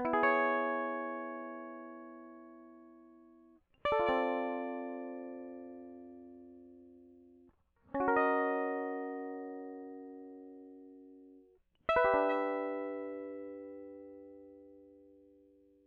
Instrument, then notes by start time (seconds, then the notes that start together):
electric guitar
0.00 B3
0.06 E4
0.14 G#4
0.24 C#5
3.86 D5
3.93 A4
4.00 F4
4.10 C4
7.95 C#4
8.01 F#4
8.09 A#4
8.17 D#5
11.88 D4 G4 B4 E5